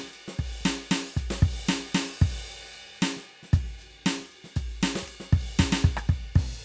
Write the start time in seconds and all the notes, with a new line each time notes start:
0.01 kick, snare
0.05 snare
0.08 snare, hi-hat pedal
0.11 snare, ride
0.28 snare
0.39 kick, ride
0.61 kick, hi-hat pedal
0.66 closed hi-hat, snare
0.90 open hi-hat, snare
1.15 kick, hi-hat pedal, ride
1.31 snare
1.43 kick, ride
1.69 open hi-hat, snare, hi-hat pedal
1.95 open hi-hat, snare
2.22 kick, ride
2.75 hi-hat pedal
3.02 snare, ride bell
3.17 snare
3.28 ride
3.43 snare
3.53 kick, ride
3.79 hi-hat pedal, ride
4.06 snare, ride
4.20 snare
4.31 ride
4.44 snare
4.56 kick, ride
4.81 snare, hi-hat pedal, ride
4.96 snare
5.03 kick, hi-hat pedal
5.08 ride bell
5.20 snare
5.33 kick, ride
5.57 kick, snare, hi-hat pedal, ride
5.73 snare
5.84 kick, ride
5.97 cross-stick
6.09 kick
6.33 kick, crash
6.36 kick, mid tom